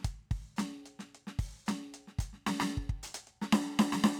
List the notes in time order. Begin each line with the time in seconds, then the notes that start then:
0.01 kick, snare, closed hi-hat
0.07 snare
0.31 kick, open hi-hat
0.56 snare, closed hi-hat, hi-hat pedal
0.86 closed hi-hat
0.99 snare, closed hi-hat
1.15 closed hi-hat
1.27 snare
1.39 kick, open hi-hat
1.66 snare, closed hi-hat, hi-hat pedal
1.94 closed hi-hat
2.07 snare
2.19 kick, closed hi-hat
2.33 snare
2.47 snare
2.60 snare
2.77 kick
2.89 kick
3.03 closed hi-hat
3.14 closed hi-hat
3.27 closed hi-hat
3.42 snare
3.53 snare
3.65 snare
3.71 snare
3.75 snare
3.79 snare
3.92 snare
4.04 snare